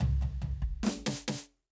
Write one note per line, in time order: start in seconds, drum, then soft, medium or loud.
0.00 floor tom loud
0.00 high tom loud
0.21 floor tom medium
0.21 high tom medium
0.42 floor tom medium
0.42 high tom medium
0.62 kick soft
0.83 snare loud
0.87 snare loud
1.06 snare loud
1.28 snare loud